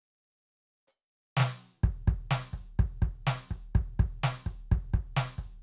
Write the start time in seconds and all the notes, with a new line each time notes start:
0.87 hi-hat pedal
1.37 snare
1.40 snare
1.83 kick
2.08 kick
2.31 snare
2.46 snare
2.53 kick
2.79 kick
3.02 kick
3.27 snare
3.34 snare
3.43 snare
3.51 kick
3.75 kick
3.99 kick
4.23 snare
4.39 snare
4.46 kick
4.71 kick
4.94 kick
5.17 snare
5.38 kick